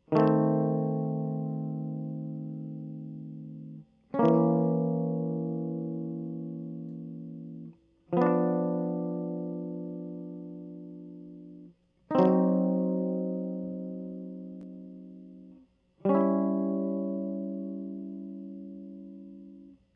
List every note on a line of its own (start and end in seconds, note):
0.13 3.84 D#3
0.13 3.82 A3
0.19 3.80 C4
4.14 7.69 C#4
4.19 7.71 A#3
4.24 7.73 E3
8.13 11.73 F3
8.13 11.71 B3
8.22 11.69 D4
12.11 15.61 D#4
12.15 15.67 C4
12.19 15.59 F#3
16.06 19.78 G3
16.06 19.78 C#4
16.15 19.72 E4